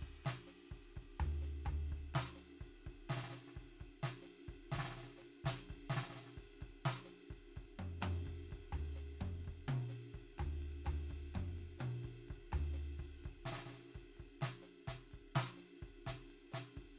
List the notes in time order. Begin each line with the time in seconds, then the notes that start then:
0.01 kick, ride
0.07 kick
0.25 snare, ride
0.47 hi-hat pedal, ride
0.71 kick, ride
0.77 kick
0.96 kick, ride
1.02 kick
1.20 floor tom, ride
1.41 hi-hat pedal, ride
1.65 kick, floor tom, ride
1.89 kick, ride
1.97 kick
2.14 snare, ride
2.35 hi-hat pedal, ride
2.61 kick, ride
2.66 kick
2.87 kick, ride
2.92 kick
3.09 snare, ride
3.17 snare
3.23 snare
3.30 snare, hi-hat pedal
3.35 snare
3.40 snare
3.47 snare
3.54 kick, snare, ride
3.60 snare
3.66 snare
3.71 snare
3.74 snare
3.78 kick, snare, ride
4.03 snare, ride
4.22 hi-hat pedal
4.26 ride
4.48 kick, ride
4.54 kick
4.72 kick, snare, ride
4.78 kick, snare
4.84 snare
4.90 snare
4.97 snare, ride
5.02 snare
5.09 snare
5.16 snare, hi-hat pedal
5.21 snare, ride
5.44 kick, snare, ride
5.50 kick
5.69 kick, ride
5.75 kick
5.90 snare, ride
5.96 snare
6.03 snare
6.10 snare, hi-hat pedal, ride
6.15 snare
6.20 snare
6.26 snare
6.31 snare
6.36 kick, snare, ride
6.40 snare
6.44 snare
6.48 snare
6.51 snare
6.61 kick, ride
6.85 snare, ride
7.05 hi-hat pedal
7.09 ride
7.30 kick, ride
7.36 kick
7.56 kick, ride
7.62 kick
7.79 mid tom, ride
8.01 hi-hat pedal, mid tom, ride
8.26 kick, ride
8.32 kick
8.51 kick, ride
8.58 kick
8.72 floor tom, ride
8.95 hi-hat pedal, ride
9.21 kick, mid tom, ride
9.27 kick
9.45 kick, ride
9.53 kick
9.68 high tom, ride
9.89 hi-hat pedal, ride
10.14 kick, ride
10.19 kick
10.38 kick, floor tom, ride
10.62 ride
10.85 floor tom, hi-hat pedal, ride
11.10 kick, ride
11.16 kick
11.34 kick, mid tom, ride
11.43 kick
11.58 ride
11.79 hi-hat pedal, high tom, ride
12.04 kick, ride
12.10 kick
12.28 kick, ride
12.36 kick
12.52 floor tom, ride
12.73 hi-hat pedal, ride
12.99 kick, ride
13.05 kick
13.24 kick, ride
13.31 kick
13.45 snare, ride
13.52 snare
13.58 snare
13.66 snare, hi-hat pedal
13.71 snare, ride
13.79 snare
13.83 snare
13.88 snare
13.93 kick, snare, ride
13.96 snare
14.01 snare
14.17 kick, ride
14.25 kick
14.41 snare, ride
14.62 hi-hat pedal, ride
14.88 kick, snare, ride
15.11 kick, ride
15.35 snare, ride
15.57 hi-hat pedal, ride
15.82 kick, ride
15.87 kick
16.07 kick, snare, ride
16.13 kick
16.25 snare
16.30 ride
16.52 snare, hi-hat pedal, ride
16.77 kick, ride
16.82 kick